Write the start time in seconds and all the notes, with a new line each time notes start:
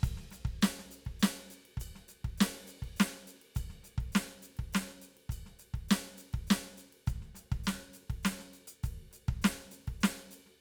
0.01 kick, snare, hi-hat pedal
0.05 ride
0.18 snare
0.32 snare, hi-hat pedal, ride
0.46 kick, ride
0.62 snare, hi-hat pedal, ride
0.80 snare
0.92 hi-hat pedal, ride
1.06 kick, ride
1.20 snare, hi-hat pedal, ride bell
1.42 snare
1.51 hi-hat pedal, ride
1.66 ride
1.78 kick, hi-hat pedal
1.82 ride bell
1.96 snare
2.09 snare, hi-hat pedal, ride
2.25 kick, ride
2.38 snare, hi-hat pedal
2.42 ride
2.55 snare
2.68 hi-hat pedal, ride
2.83 kick, ride
2.97 snare, hi-hat pedal, ride bell
3.17 snare
3.28 hi-hat pedal, ride
3.42 ride
3.56 kick, hi-hat pedal, ride bell
3.70 snare
3.84 snare, hi-hat pedal, ride
3.99 kick, ride
4.13 snare, hi-hat pedal, ride bell
4.27 snare
4.43 hi-hat pedal, ride
4.58 kick, ride
4.73 snare, hi-hat pedal, ride bell
4.90 snare
5.02 hi-hat pedal, ride
5.18 ride
5.30 kick, hi-hat pedal, ride bell
5.47 snare
5.60 snare, hi-hat pedal, ride
5.75 kick, ride
5.89 snare, hi-hat pedal, ride bell
6.18 hi-hat pedal, ride
6.34 kick, ride
6.48 snare, hi-hat pedal, ride bell
6.65 snare
6.78 hi-hat pedal, ride
6.93 snare, ride
7.07 kick, hi-hat pedal, ride bell
7.22 snare
7.35 snare, hi-hat pedal, ride
7.52 kick, ride
7.64 snare, hi-hat pedal
7.69 ride bell
7.81 snare
7.94 hi-hat pedal, ride
8.10 kick, ride
8.24 snare, hi-hat pedal, ride bell
8.40 snare
8.54 hi-hat pedal, ride
8.68 closed hi-hat
8.84 kick, hi-hat pedal, ride
9.12 snare, hi-hat pedal, ride
9.29 kick, ride
9.43 snare, hi-hat pedal, ride bell
9.58 snare
9.72 hi-hat pedal, ride
9.88 kick, ride
10.01 snare, hi-hat pedal, ride bell
10.18 snare
10.32 hi-hat pedal, ride
10.47 snare